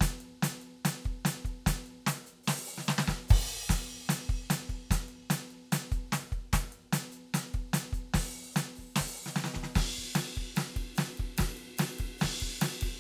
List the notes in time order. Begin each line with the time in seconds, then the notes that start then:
0.01 closed hi-hat, kick, snare
0.21 closed hi-hat
0.43 closed hi-hat, snare
0.62 closed hi-hat
0.85 closed hi-hat, snare
1.05 kick, closed hi-hat
1.25 closed hi-hat, snare
1.45 kick, closed hi-hat
1.67 closed hi-hat, kick, snare
1.86 closed hi-hat
2.07 closed hi-hat, snare
2.27 closed hi-hat
2.44 hi-hat pedal
2.48 open hi-hat, snare
2.67 open hi-hat
2.78 snare
2.85 snare, hi-hat pedal
3.08 kick, snare
3.29 kick, hi-hat pedal, crash
3.34 snare
3.49 closed hi-hat
3.69 closed hi-hat, kick, snare, hi-hat pedal
3.89 closed hi-hat
4.09 closed hi-hat, snare
4.29 kick, closed hi-hat
4.50 closed hi-hat, snare
4.70 kick, closed hi-hat
4.90 closed hi-hat, kick, snare, hi-hat pedal
5.09 closed hi-hat
5.29 closed hi-hat, snare, hi-hat pedal
5.51 closed hi-hat
5.72 closed hi-hat, snare
5.92 closed hi-hat, kick
6.12 closed hi-hat, snare
6.32 kick, closed hi-hat
6.53 open hi-hat, kick, snare, hi-hat pedal
6.72 closed hi-hat
6.93 closed hi-hat, snare
7.12 closed hi-hat
7.34 closed hi-hat, snare
7.54 kick, closed hi-hat
7.74 closed hi-hat, snare
7.93 closed hi-hat, kick
8.14 open hi-hat, kick, snare
8.35 open hi-hat
8.53 closed hi-hat, snare, hi-hat pedal
8.75 open hi-hat, kick
8.96 open hi-hat, snare
9.01 kick
9.15 open hi-hat
9.26 snare
9.36 snare, hi-hat pedal
9.44 snare
9.54 kick, snare
9.63 snare
9.75 kick, snare, hi-hat pedal, ride
9.93 ride
9.98 kick
10.14 snare, hi-hat pedal, ride
10.36 kick, ride
10.55 snare, hi-hat pedal, ride
10.76 kick, ride
10.95 snare, hi-hat pedal, ride
11.18 kick, ride
11.37 kick, snare, hi-hat pedal, ride
11.50 kick
11.57 ride
11.77 snare, hi-hat pedal, ride
11.99 kick, ride
12.19 snare, hi-hat pedal, ride
12.24 kick
12.41 kick, ride
12.61 snare, hi-hat pedal, ride
12.81 kick, ride